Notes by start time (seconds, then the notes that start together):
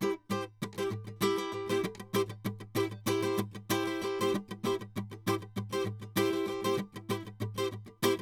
0.02 E4 G4 C5
0.31 E4 G4 C5
0.79 E4 G4 C5
1.23 E4 G4
1.37 E4 G4
1.52 E4 G4
1.70 E4 G4 C5
2.14 E4 G4 C5
2.76 E4 G4 C5
3.07 E4 G4 C5
3.22 E4 G4 C5
3.70 E4 G4 C5
3.86 G4 C5
4.02 E4 G4 C5
4.22 E4 G4 C5
4.65 E4 G4 C5
5.28 E4 G4 C5
5.73 E4 G4 C5
6.17 E4 G4 C5
6.32 G4 C5
6.47 E4 G4 C5
6.65 E4 G4 C5
6.98 E4
7.10 E4 C5
7.59 E4 G4 C5
8.04 E4 G4 C5